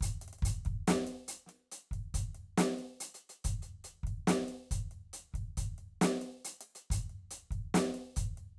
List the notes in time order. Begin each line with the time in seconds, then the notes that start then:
0.01 closed hi-hat, kick
0.22 closed hi-hat
0.28 closed hi-hat
0.33 closed hi-hat
0.39 kick, closed hi-hat
0.45 closed hi-hat
0.65 kick, closed hi-hat
0.88 closed hi-hat, snare
1.07 closed hi-hat
1.28 closed hi-hat
1.47 snare, closed hi-hat
1.72 closed hi-hat
1.91 kick, closed hi-hat
2.14 closed hi-hat, kick
2.35 closed hi-hat
2.58 closed hi-hat, snare
2.79 closed hi-hat
3.01 closed hi-hat
3.15 closed hi-hat
3.29 closed hi-hat
3.45 closed hi-hat, kick
3.62 closed hi-hat
3.84 closed hi-hat
4.03 kick, closed hi-hat
4.27 closed hi-hat, snare
4.48 closed hi-hat
4.71 closed hi-hat, kick
4.91 closed hi-hat
5.13 closed hi-hat
5.32 kick, snare, closed hi-hat
5.57 closed hi-hat, kick
5.78 closed hi-hat
6.02 closed hi-hat, snare
6.22 closed hi-hat
6.45 closed hi-hat
6.61 closed hi-hat
6.75 closed hi-hat
6.90 closed hi-hat, kick
7.10 closed hi-hat
7.31 closed hi-hat
7.51 kick, closed hi-hat
7.74 closed hi-hat, snare
7.94 closed hi-hat
8.16 closed hi-hat, kick
8.37 closed hi-hat